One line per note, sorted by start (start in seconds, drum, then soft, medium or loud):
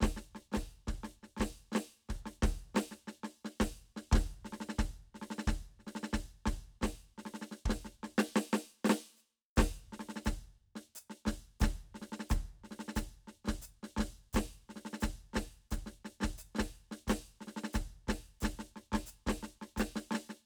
0.01 kick medium
0.01 snare soft
0.03 snare medium
0.17 snare soft
0.35 snare soft
0.52 snare soft
0.54 kick soft
0.54 snare medium
0.88 kick medium
0.88 snare soft
1.04 snare soft
1.23 snare soft
1.37 kick medium
1.37 snare soft
1.41 snare medium
1.72 snare soft
1.75 snare medium
2.09 kick medium
2.09 snare soft
2.26 snare soft
2.43 kick medium
2.43 snare medium
2.75 snare soft
2.77 snare loud
2.92 snare soft
3.08 snare soft
3.24 snare soft
3.45 snare soft
3.61 kick medium
3.61 snare medium
3.97 snare soft
4.12 kick loud
4.12 snare medium
4.15 snare medium
4.45 snare soft
4.53 snare soft
4.61 snare soft
4.69 snare medium
4.79 kick medium
4.79 snare medium
5.15 snare soft
5.22 snare soft
5.31 snare soft
5.39 snare medium
5.48 kick medium
5.48 snare medium
5.80 snare soft
5.87 snare soft
5.96 snare soft
6.04 snare medium
6.13 kick medium
6.13 snare medium
6.46 kick medium
6.46 snare medium
6.82 kick medium
6.82 snare soft
6.83 snare medium
7.18 snare soft
7.26 snare soft
7.34 snare soft
7.42 snare soft
7.52 snare soft
7.66 kick medium
7.66 snare soft
7.70 snare medium
7.85 snare soft
8.04 snare soft
8.19 snare loud
8.36 snare loud
8.53 snare medium
8.85 snare loud
8.90 snare loud
9.17 hi-hat pedal soft
9.57 kick loud
9.57 snare medium
9.57 hi-hat pedal soft
9.59 snare loud
9.93 snare soft
10.00 snare soft
10.09 snare soft
10.16 snare soft
10.25 kick medium
10.25 snare medium
10.25 hi-hat pedal medium
10.76 snare soft
10.96 hi-hat pedal medium
11.10 snare soft
11.26 kick soft
11.26 snare soft
11.26 snare medium
11.60 kick loud
11.60 snare soft
11.60 hi-hat pedal medium
11.63 snare medium
11.95 snare soft
12.02 snare soft
12.12 snare soft
12.20 snare soft
12.30 kick medium
12.30 snare medium
12.30 hi-hat pedal medium
12.64 snare soft
12.71 snare soft
12.80 snare soft
12.88 snare soft
12.96 kick medium
12.96 snare medium
12.96 hi-hat pedal medium
13.28 snare soft
13.45 snare soft
13.48 kick medium
13.48 snare medium
13.62 hi-hat pedal medium
13.83 snare soft
13.97 kick medium
13.97 snare medium
14.00 snare medium
14.33 kick medium
14.33 snare soft
14.33 hi-hat pedal medium
14.37 snare medium
14.70 snare soft
14.76 snare soft
14.86 snare soft
14.94 snare soft
15.01 kick medium
15.01 snare medium
15.01 hi-hat pedal medium
15.34 snare soft
15.36 kick soft
15.36 snare medium
15.71 kick medium
15.71 snare soft
15.71 hi-hat pedal medium
15.87 snare soft
16.05 snare soft
16.21 snare soft
16.23 kick medium
16.23 snare medium
16.38 hi-hat pedal medium
16.55 snare soft
16.59 kick soft
16.59 snare medium
16.92 snare soft
17.07 kick soft
17.07 snare soft
17.07 hi-hat pedal medium
17.10 snare medium
17.41 snare soft
17.48 snare soft
17.57 snare soft
17.64 snare medium
17.74 kick medium
17.74 snare medium
17.74 hi-hat pedal medium
18.08 kick medium
18.08 snare soft
18.09 snare medium
18.41 kick medium
18.41 snare soft
18.41 hi-hat pedal medium
18.44 snare medium
18.59 snare soft
18.76 snare soft
18.92 kick soft
18.92 snare soft
18.94 snare medium
19.07 hi-hat pedal medium
19.27 kick medium
19.27 snare medium
19.29 snare medium
19.43 snare soft
19.62 snare soft
19.77 kick soft
19.77 snare soft
19.77 hi-hat pedal medium
19.80 snare medium
19.96 snare medium
20.11 snare medium
20.14 snare medium
20.30 snare soft